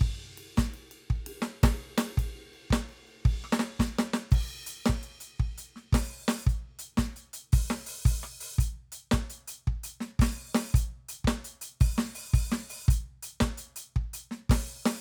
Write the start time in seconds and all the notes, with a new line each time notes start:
0.01 kick, ride
0.38 ride
0.57 kick, snare, hi-hat pedal
0.74 ride
0.91 ride bell
1.10 kick
1.26 ride
1.42 snare
1.63 kick, snare, ride
1.98 snare, ride
2.18 kick, hi-hat pedal, ride
2.53 ride
2.71 kick, snare
2.89 ride
3.07 ride
3.24 kick, ride
3.44 cross-stick
3.52 snare
3.59 snare
3.79 kick, snare
3.99 snare
4.14 snare
4.31 kick, hi-hat pedal, crash
4.67 closed hi-hat
4.86 kick, snare
5.03 closed hi-hat
5.20 closed hi-hat
5.40 kick
5.58 closed hi-hat
5.76 snare
5.93 open hi-hat, kick, snare
6.28 open hi-hat, snare
6.43 kick, hi-hat pedal
6.49 closed hi-hat
6.79 closed hi-hat
6.97 kick, snare
7.16 closed hi-hat
7.33 closed hi-hat
7.52 open hi-hat, kick
7.70 snare
7.86 open hi-hat
8.05 open hi-hat, kick
8.23 cross-stick
8.40 open hi-hat
8.54 hi-hat pedal
8.58 closed hi-hat, kick
8.92 closed hi-hat
9.11 kick, snare
9.30 closed hi-hat
9.48 closed hi-hat
9.67 kick
9.84 closed hi-hat
10.01 snare
10.19 open hi-hat, kick, snare
10.55 open hi-hat, snare
10.72 closed hi-hat, kick, hi-hat pedal
11.09 closed hi-hat
11.24 kick, snare
11.45 closed hi-hat
11.61 closed hi-hat
11.80 open hi-hat, kick
11.98 snare
12.15 open hi-hat
12.34 open hi-hat, kick
12.52 snare
12.70 open hi-hat
12.85 kick, hi-hat pedal
12.90 closed hi-hat
13.23 closed hi-hat
13.40 kick, snare
13.58 closed hi-hat
13.76 closed hi-hat
13.96 kick
14.14 closed hi-hat
14.31 snare
14.50 open hi-hat, kick, snare
14.86 open hi-hat, snare